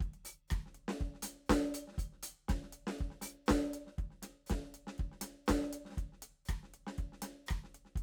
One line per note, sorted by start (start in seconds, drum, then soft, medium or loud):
0.01 kick medium
0.01 closed hi-hat soft
0.14 closed hi-hat soft
0.25 open hi-hat medium
0.25 snare soft
0.48 kick medium
0.48 cross-stick medium
0.48 closed hi-hat medium
0.48 hi-hat pedal soft
0.67 snare soft
0.75 closed hi-hat soft
0.89 snare medium
1.01 kick medium
1.01 closed hi-hat soft
1.15 snare soft
1.23 closed hi-hat loud
1.23 snare soft
1.47 kick medium
1.47 snare loud
1.47 closed hi-hat medium
1.47 hi-hat pedal soft
1.63 snare soft
1.75 closed hi-hat medium
1.88 snare soft
1.92 snare soft
1.94 snare soft
1.99 closed hi-hat medium
1.99 kick medium
2.13 snare soft
2.23 closed hi-hat loud
2.49 kick medium
2.49 snare medium
2.49 closed hi-hat medium
2.63 snare soft
2.73 closed hi-hat medium
2.88 snare medium
2.99 kick medium
2.99 closed hi-hat soft
3.11 snare soft
3.22 open hi-hat loud
3.22 snare soft
3.47 snare loud
3.47 closed hi-hat medium
3.47 hi-hat pedal soft
3.51 kick medium
3.64 snare soft
3.74 closed hi-hat medium
3.87 snare soft
3.99 kick medium
3.99 closed hi-hat soft
4.11 snare soft
4.23 snare soft
4.23 open hi-hat medium
4.47 snare medium
4.47 closed hi-hat medium
4.47 hi-hat pedal medium
4.51 kick medium
4.64 snare soft
4.75 closed hi-hat medium
4.88 snare medium
4.99 kick medium
4.99 closed hi-hat soft
5.12 snare soft
5.22 snare soft
5.22 open hi-hat loud
5.47 kick medium
5.47 snare medium
5.47 closed hi-hat medium
5.47 hi-hat pedal soft
5.63 snare soft
5.73 closed hi-hat medium
5.86 snare soft
5.90 snare soft
5.92 snare soft
5.98 kick medium
5.98 closed hi-hat soft
6.13 snare soft
6.23 open hi-hat medium
6.46 kick medium
6.46 cross-stick medium
6.46 closed hi-hat medium
6.46 hi-hat pedal medium
6.64 snare soft
6.74 closed hi-hat soft
6.87 snare medium
6.99 kick medium
6.99 closed hi-hat soft
7.13 snare soft
7.23 snare medium
7.23 open hi-hat medium
7.47 cross-stick medium
7.47 closed hi-hat medium
7.47 hi-hat pedal medium
7.51 kick medium
7.64 snare soft
7.75 closed hi-hat soft
7.86 snare soft
7.96 kick medium
7.96 closed hi-hat soft